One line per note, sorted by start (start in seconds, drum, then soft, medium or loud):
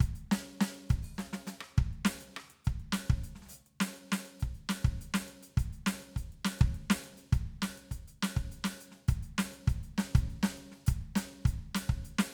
0.01 closed hi-hat soft
0.01 kick loud
0.16 closed hi-hat soft
0.32 snare loud
0.48 closed hi-hat soft
0.61 snare loud
0.75 closed hi-hat soft
0.90 closed hi-hat soft
0.90 kick loud
1.03 open hi-hat soft
1.19 snare medium
1.19 hi-hat pedal soft
1.33 snare medium
1.48 snare medium
1.48 hi-hat pedal medium
1.61 cross-stick medium
1.78 kick loud
1.78 closed hi-hat soft
1.94 closed hi-hat soft
2.06 snare loud
2.14 snare soft
2.21 closed hi-hat soft
2.37 cross-stick medium
2.45 snare soft
2.51 closed hi-hat soft
2.65 closed hi-hat soft
2.65 kick medium
2.80 closed hi-hat soft
2.93 snare loud
3.09 kick loud
3.09 closed hi-hat soft
3.24 closed hi-hat soft
3.36 snare soft
3.42 snare soft
3.46 snare soft
3.49 snare soft
3.49 hi-hat pedal medium
3.53 closed hi-hat medium
3.67 closed hi-hat soft
3.81 snare loud
3.88 snare soft
3.97 closed hi-hat soft
4.12 snare loud
4.26 snare soft
4.26 closed hi-hat soft
4.40 closed hi-hat soft
4.40 kick medium
4.55 closed hi-hat soft
4.70 snare loud
4.85 kick loud
4.85 closed hi-hat soft
5.02 closed hi-hat soft
5.14 snare loud
5.29 closed hi-hat soft
5.43 closed hi-hat soft
5.58 closed hi-hat medium
5.58 kick loud
5.73 closed hi-hat soft
5.87 snare loud
5.95 snare soft
6.03 closed hi-hat soft
6.17 closed hi-hat soft
6.17 kick medium
6.33 closed hi-hat soft
6.45 snare loud
6.60 kick loud
6.60 closed hi-hat soft
6.75 closed hi-hat soft
6.91 snare loud
7.04 closed hi-hat soft
7.18 closed hi-hat soft
7.33 closed hi-hat soft
7.33 kick loud
7.48 closed hi-hat soft
7.63 snare medium
7.71 snare soft
7.78 closed hi-hat soft
7.92 closed hi-hat soft
7.92 kick medium
8.08 closed hi-hat soft
8.23 snare loud
8.37 kick medium
8.37 snare soft
8.37 closed hi-hat soft
8.52 closed hi-hat soft
8.65 snare medium
8.81 closed hi-hat soft
8.92 snare soft
9.09 closed hi-hat medium
9.09 kick loud
9.23 closed hi-hat soft
9.39 snare loud
9.54 closed hi-hat soft
9.68 closed hi-hat soft
9.68 kick loud
9.84 closed hi-hat soft
9.99 snare loud
10.15 closed hi-hat soft
10.15 kick loud
10.30 closed hi-hat soft
10.44 snare loud
10.51 snare soft
10.58 closed hi-hat soft
10.72 snare soft
10.76 snare soft
10.87 closed hi-hat medium
10.87 kick loud
11.16 closed hi-hat medium
11.16 snare loud
11.46 closed hi-hat medium
11.46 kick loud
11.75 closed hi-hat medium
11.75 snare medium
11.90 kick medium
12.05 closed hi-hat soft
12.19 snare loud